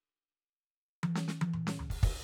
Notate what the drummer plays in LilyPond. \new DrumStaff \drummode { \time 4/4 \tempo 4 = 118 r4 r4 tommh16 sn16 sn16 tommh16 toml16 sn16 tomfh16 <bd cymc>16 | <bd cymc>4 r4 r4 r4 | }